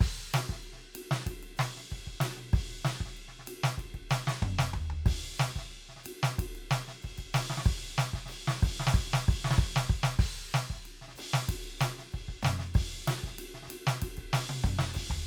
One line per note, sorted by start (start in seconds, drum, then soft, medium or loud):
0.01 kick loud
0.01 crash loud
0.34 snare loud
0.34 hi-hat pedal medium
0.34 ride loud
0.50 kick medium
0.50 snare soft
0.63 hi-hat pedal soft
0.63 ride soft
0.73 snare soft
0.77 snare soft
0.83 snare soft
0.94 hi-hat pedal soft
0.94 ride loud
1.03 kick soft
1.11 snare loud
1.27 kick medium
1.27 ride loud
1.43 ride medium
1.55 kick soft
1.55 hi-hat pedal medium
1.59 snare loud
1.59 ride loud
1.77 snare soft
1.91 kick medium
1.91 ride medium
2.07 kick medium
2.21 snare loud
2.21 hi-hat pedal medium
2.21 ride loud
2.37 high tom medium
2.53 kick loud
2.53 ride loud
2.85 snare loud
2.85 hi-hat pedal medium
2.85 ride medium
3.01 kick medium
3.06 snare soft
3.17 ride soft
3.28 snare soft
3.39 snare soft
3.44 kick soft
3.44 snare soft
3.44 hi-hat pedal medium
3.48 ride loud
3.64 snare loud
3.78 kick medium
3.78 ride medium
3.95 kick medium
3.95 ride soft
4.10 snare loud
4.10 hi-hat pedal medium
4.10 ride medium
4.28 snare loud
4.43 kick loud
4.43 mid tom loud
4.59 snare loud
4.74 kick medium
4.74 floor tom loud
4.90 floor tom loud
5.06 kick loud
5.06 ride loud
5.38 snare loud
5.38 hi-hat pedal medium
5.38 ride medium
5.56 kick medium
5.56 snare medium
5.69 hi-hat pedal soft
5.89 snare soft
5.97 snare soft
6.04 kick soft
6.04 hi-hat pedal medium
6.04 ride loud
6.23 snare loud
6.39 kick loud
6.39 ride loud
6.55 ride medium
6.70 kick soft
6.70 snare loud
6.70 hi-hat pedal medium
6.70 ride medium
6.88 snare medium
7.03 kick medium
7.03 ride medium
7.18 kick medium
7.18 ride bell medium
7.34 snare loud
7.34 hi-hat pedal medium
7.34 ride loud
7.50 snare medium
7.58 snare medium
7.65 kick loud
7.65 ride loud
7.74 hi-hat pedal soft
7.98 snare loud
7.98 hi-hat pedal medium
8.14 kick medium
8.14 snare medium
8.26 snare medium
8.26 hi-hat pedal medium
8.26 ride loud
8.48 snare loud
8.61 kick loud
8.61 hi-hat pedal medium
8.61 ride loud
8.80 snare medium
8.87 snare loud
8.94 kick loud
8.94 ride loud
9.14 snare loud
9.29 kick loud
9.29 ride loud
9.45 snare loud
9.51 snare loud
9.58 kick loud
9.58 ride loud
9.76 snare loud
9.90 kick loud
9.90 snare soft
10.04 snare loud
10.19 kick loud
10.19 crash loud
10.54 snare loud
10.54 hi-hat pedal medium
10.70 kick medium
10.70 snare soft
10.83 hi-hat pedal soft
10.83 ride medium
11.02 snare soft
11.09 snare soft
11.15 kick soft
11.15 hi-hat pedal medium
11.15 ride loud
11.34 snare loud
11.49 kick medium
11.49 ride loud
11.65 ride soft
11.79 kick soft
11.79 snare loud
11.79 hi-hat pedal medium
11.79 ride loud
11.99 snare soft
12.13 kick medium
12.13 ride medium
12.29 kick medium
12.43 snare loud
12.43 hi-hat pedal medium
12.43 mid tom loud
12.59 snare medium
12.75 kick loud
12.75 ride loud
13.03 kick soft
13.03 hi-hat pedal medium
13.08 snare loud
13.08 ride loud
13.24 kick medium
13.24 snare soft
13.39 ride loud
13.55 snare medium
13.63 snare soft
13.65 kick soft
13.65 snare soft
13.68 snare soft
13.68 hi-hat pedal medium
13.68 ride loud
13.87 snare loud
13.97 snare soft
14.02 kick medium
14.02 ride loud
14.17 kick medium
14.17 ride medium
14.33 snare loud
14.33 hi-hat pedal medium
14.33 ride loud
14.50 high tom loud
14.64 kick loud
14.64 hi-hat pedal medium
14.64 mid tom loud
14.79 snare loud
14.94 kick medium
14.94 hi-hat pedal medium
14.94 ride loud
15.10 kick medium
15.10 floor tom loud